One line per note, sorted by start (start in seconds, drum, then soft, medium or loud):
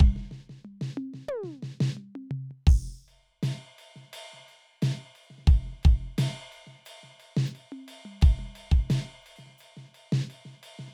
0.01 kick loud
0.01 mid tom loud
0.17 snare soft
0.32 snare soft
0.50 snare soft
0.65 mid tom medium
0.82 snare medium
0.98 high tom loud
1.14 snare soft
1.29 high tom loud
1.44 snare soft
1.63 snare medium
1.81 snare loud
1.98 mid tom medium
2.16 high tom medium
2.32 floor tom loud
2.52 floor tom soft
2.68 kick loud
2.68 crash medium
2.88 floor tom soft
3.09 ride bell soft
3.44 snare loud
3.44 ride medium
3.79 ride medium
3.97 snare soft
4.14 ride loud
4.34 snare soft
4.40 snare soft
4.49 ride soft
4.83 snare loud
4.83 ride medium
5.16 ride soft
5.24 ride soft
5.31 snare soft
5.39 snare soft
5.46 kick loud
5.46 snare soft
5.46 ride soft
5.67 snare soft
5.73 snare soft
5.84 kick loud
5.84 ride soft
6.19 snare loud
6.19 ride loud
6.24 hi-hat pedal soft
6.53 ride soft
6.68 snare soft
6.86 hi-hat pedal medium
6.86 ride medium
7.04 snare soft
7.20 ride soft
7.37 snare loud
7.47 hi-hat pedal medium
7.56 ride soft
7.73 high tom medium
7.89 ride medium
8.06 mid tom medium
8.22 kick loud
8.22 ride medium
8.40 mid tom soft
8.56 ride medium
8.72 kick loud
8.91 snare loud
8.91 ride medium
9.02 snare soft
9.22 hi-hat pedal soft
9.27 ride medium
9.37 snare soft
9.37 ride soft
9.47 snare soft
9.50 snare soft
9.59 hi-hat pedal medium
9.59 ride soft
9.78 snare soft
9.95 ride soft
10.13 snare loud
10.31 ride bell medium
10.46 snare soft
10.64 ride medium
10.80 snare soft
10.89 snare soft